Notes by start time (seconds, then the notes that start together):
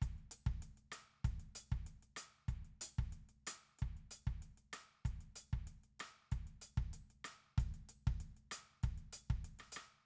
0.02 kick, closed hi-hat
0.18 closed hi-hat
0.31 closed hi-hat
0.46 kick
0.62 closed hi-hat
0.77 closed hi-hat
0.92 cross-stick, closed hi-hat
1.24 kick, closed hi-hat
1.40 closed hi-hat
1.55 closed hi-hat
1.72 kick
1.86 closed hi-hat
2.02 closed hi-hat
2.16 closed hi-hat, cross-stick
2.48 kick, closed hi-hat
2.65 closed hi-hat
2.81 closed hi-hat
2.98 kick
3.12 closed hi-hat
3.29 closed hi-hat
3.47 closed hi-hat, cross-stick
3.79 kick, closed hi-hat
3.97 closed hi-hat
4.11 closed hi-hat
4.27 kick
4.42 closed hi-hat
4.57 closed hi-hat
4.73 cross-stick, closed hi-hat
5.05 kick, closed hi-hat
5.21 closed hi-hat
5.36 closed hi-hat
5.53 kick
5.67 closed hi-hat
5.84 closed hi-hat
5.99 cross-stick, closed hi-hat
6.32 kick, closed hi-hat
6.47 closed hi-hat
6.61 closed hi-hat
6.77 kick
6.93 closed hi-hat
7.10 closed hi-hat
7.24 cross-stick, closed hi-hat
7.58 kick, closed hi-hat
7.74 closed hi-hat
7.89 closed hi-hat
8.07 kick
8.20 closed hi-hat
8.37 closed hi-hat
8.51 closed hi-hat, cross-stick
8.83 kick, closed hi-hat
8.98 closed hi-hat
9.13 closed hi-hat
9.30 kick
9.44 closed hi-hat
9.59 cross-stick, closed hi-hat
9.72 closed hi-hat
9.76 cross-stick